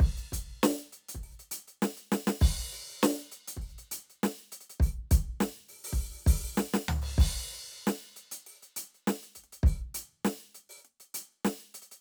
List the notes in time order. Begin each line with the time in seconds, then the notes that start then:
0.01 kick, hi-hat pedal, crash
0.18 closed hi-hat
0.33 closed hi-hat, kick
0.50 closed hi-hat
0.64 snare
0.79 closed hi-hat
0.93 closed hi-hat
1.09 closed hi-hat
1.15 kick
1.24 open hi-hat
1.32 hi-hat pedal
1.40 closed hi-hat
1.52 closed hi-hat
1.68 closed hi-hat
1.83 snare
1.98 closed hi-hat
2.12 snare
2.28 snare
2.42 kick, crash
2.60 open hi-hat
2.73 open hi-hat
2.90 open hi-hat
3.02 snare, hi-hat pedal
3.19 closed hi-hat
3.32 closed hi-hat
3.48 closed hi-hat
3.57 kick
3.62 open hi-hat
3.70 hi-hat pedal
3.79 closed hi-hat
3.92 closed hi-hat
4.10 closed hi-hat
4.24 snare
4.38 closed hi-hat
4.53 closed hi-hat
4.61 closed hi-hat
4.70 closed hi-hat
4.80 open hi-hat, kick
4.88 hi-hat pedal
5.12 open hi-hat, kick
5.41 snare
5.69 open hi-hat
5.85 open hi-hat
5.93 kick
6.01 open hi-hat
6.14 open hi-hat
6.27 open hi-hat, kick
6.44 open hi-hat
6.58 snare
6.74 snare
6.89 floor tom
7.03 crash
7.19 kick, crash
7.36 open hi-hat
7.53 open hi-hat
7.72 open hi-hat
7.88 snare
8.17 closed hi-hat
8.32 closed hi-hat
8.47 open hi-hat
8.56 hi-hat pedal
8.63 closed hi-hat
8.77 closed hi-hat
8.95 closed hi-hat
9.08 snare
9.23 closed hi-hat
9.36 closed hi-hat, kick
9.44 closed hi-hat
9.53 closed hi-hat
9.64 open hi-hat, kick
9.76 hi-hat pedal
9.95 closed hi-hat
10.25 snare
10.39 closed hi-hat
10.55 open hi-hat
10.70 open hi-hat
10.78 hi-hat pedal
10.85 closed hi-hat
11.01 closed hi-hat
11.15 closed hi-hat
11.33 closed hi-hat
11.45 snare
11.59 closed hi-hat
11.75 closed hi-hat
11.83 closed hi-hat
11.92 open hi-hat